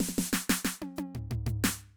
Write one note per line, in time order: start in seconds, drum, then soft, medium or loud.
0.01 snare loud
0.01 hi-hat pedal medium
0.08 snare medium
0.18 snare loud
0.33 snare loud
0.49 snare loud
0.49 hi-hat pedal medium
0.65 snare medium
0.82 high tom medium
0.96 hi-hat pedal medium
0.96 high tom loud
1.15 floor tom medium
1.31 floor tom medium
1.46 floor tom loud
1.46 hi-hat pedal medium
1.64 open hi-hat medium
1.64 snare loud
1.69 snare soft